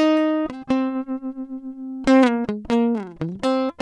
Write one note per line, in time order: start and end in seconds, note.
0.00 0.51 D#4
0.52 0.66 C4
0.73 1.05 C4
2.09 2.25 C4
2.25 2.49 A#3
2.51 2.63 G#3
2.72 3.01 A#3
3.23 3.34 E3
3.45 3.74 C4